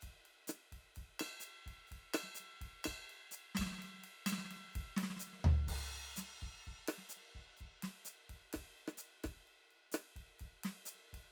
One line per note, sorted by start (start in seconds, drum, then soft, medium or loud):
0.01 kick soft
0.01 hi-hat pedal soft
0.01 ride soft
0.08 kick soft
0.25 ride soft
0.47 cross-stick medium
0.47 hi-hat pedal medium
0.47 ride medium
0.72 kick soft
0.72 ride soft
0.95 kick soft
0.95 hi-hat pedal soft
0.95 ride soft
1.20 cross-stick medium
1.20 ride bell loud
1.40 hi-hat pedal medium
1.40 ride soft
1.66 kick soft
1.66 ride soft
1.71 kick soft
1.87 hi-hat pedal soft
1.91 kick soft
1.91 ride soft
1.96 kick soft
2.14 cross-stick medium
2.14 ride bell loud
2.23 snare soft
2.35 hi-hat pedal medium
2.35 ride soft
2.40 snare soft
2.46 snare soft
2.49 snare soft
2.53 snare soft
2.61 kick soft
2.61 ride medium
2.66 kick soft
2.83 cross-stick medium
2.83 hi-hat pedal soft
2.83 ride bell loud
2.87 kick soft
2.92 kick soft
3.10 ride soft
3.31 hi-hat pedal medium
3.31 ride medium
3.55 kick soft
3.55 snare medium
3.55 ride bell loud
3.61 kick soft
3.61 snare medium
3.66 snare medium
3.72 snare soft
3.78 snare soft
3.78 ride medium
3.84 snare soft
3.89 snare soft
3.94 snare soft
3.99 snare soft
4.03 snare soft
4.03 ride medium
4.26 snare medium
4.26 hi-hat pedal medium
4.26 ride bell loud
4.32 snare medium
4.38 snare soft
4.45 snare soft
4.51 snare soft
4.51 ride medium
4.56 snare soft
4.60 snare soft
4.64 snare soft
4.68 snare soft
4.73 kick soft
4.73 snare soft
4.73 hi-hat pedal soft
4.73 ride medium
4.82 kick soft
4.97 snare medium
4.97 ride medium
5.03 snare medium
5.10 snare medium
5.17 snare soft
5.17 hi-hat pedal medium
5.22 snare soft
5.22 ride medium
5.27 snare soft
5.33 snare soft
5.39 snare soft
5.44 kick soft
5.44 floor tom loud
5.68 kick soft
5.68 crash medium
5.74 kick soft
6.16 snare soft
6.16 hi-hat pedal medium
6.42 kick soft
6.62 hi-hat pedal soft
6.67 kick soft
6.72 kick soft
6.88 cross-stick medium
6.88 ride loud
6.98 snare soft
7.09 hi-hat pedal medium
7.16 snare soft
7.35 kick soft
7.40 kick soft
7.57 kick soft
7.57 hi-hat pedal soft
7.65 kick soft
7.83 snare medium
7.83 ride medium
8.05 snare soft
8.05 hi-hat pedal medium
8.05 ride soft
8.29 kick soft
8.29 ride soft
8.52 kick soft
8.52 cross-stick medium
8.52 hi-hat pedal soft
8.52 ride medium
8.60 kick soft
8.78 ride soft
8.88 cross-stick medium
8.97 hi-hat pedal medium
8.97 ride soft
9.24 kick soft
9.24 cross-stick medium
9.24 ride medium
9.30 kick soft
9.47 ride soft
9.71 ride soft
9.92 cross-stick medium
9.92 hi-hat pedal medium
9.92 ride medium
10.16 kick soft
10.16 ride soft
10.21 kick soft
10.38 kick soft
10.38 hi-hat pedal soft
10.38 ride soft
10.46 kick soft
10.64 snare medium
10.64 ride medium
10.86 hi-hat pedal medium
10.86 ride medium
10.94 snare soft
11.13 kick soft
11.13 ride medium
11.18 kick soft